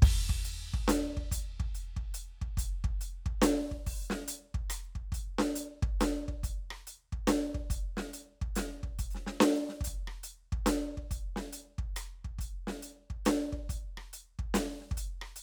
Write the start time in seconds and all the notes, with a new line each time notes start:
0.03 kick, crash
0.30 kick
0.45 closed hi-hat
0.74 kick
0.88 closed hi-hat, snare
1.17 kick
1.32 closed hi-hat, kick
1.60 kick
1.75 closed hi-hat
1.97 kick
2.14 closed hi-hat
2.42 kick
2.58 closed hi-hat, kick
2.84 kick
3.01 closed hi-hat
3.26 kick
3.42 closed hi-hat, snare
3.72 kick
3.87 open hi-hat, kick
4.05 hi-hat pedal
4.10 snare
4.28 closed hi-hat
4.55 kick
4.70 closed hi-hat, cross-stick
4.83 hi-hat pedal
4.96 kick
5.12 closed hi-hat, kick
5.39 snare
5.56 closed hi-hat
5.83 kick
6.01 closed hi-hat, snare
6.28 kick
6.44 closed hi-hat, kick
6.71 cross-stick
6.87 closed hi-hat
7.13 kick
7.28 closed hi-hat, snare
7.55 kick
7.70 closed hi-hat, kick
7.97 snare
8.14 closed hi-hat
8.42 kick
8.56 closed hi-hat, snare
8.83 kick
8.99 closed hi-hat, kick
9.11 hi-hat pedal
9.15 snare
9.27 snare
9.41 snare
9.54 open hi-hat, hi-hat pedal
9.69 snare
9.81 closed hi-hat, kick
9.88 kick
10.08 cross-stick
10.24 closed hi-hat
10.53 kick
10.66 closed hi-hat, snare
10.98 kick
11.11 closed hi-hat, kick
11.36 snare
11.53 closed hi-hat
11.79 kick
11.96 closed hi-hat, cross-stick
12.25 kick
12.39 closed hi-hat, kick
12.68 snare
12.83 closed hi-hat
13.10 kick
13.26 closed hi-hat, snare
13.53 kick
13.70 closed hi-hat, kick
13.98 cross-stick
14.13 closed hi-hat
14.39 kick
14.54 closed hi-hat, snare
14.81 snare
14.91 kick
14.98 closed hi-hat
15.22 cross-stick
15.36 closed hi-hat